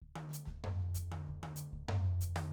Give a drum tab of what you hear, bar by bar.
HH |--p---p---p---p-|
SD |--oo-oo-o-oo-oor|
T1 |-o-----o-o-----o|
FT |----o-------o---|
BD |o--o--o-o--o--o-|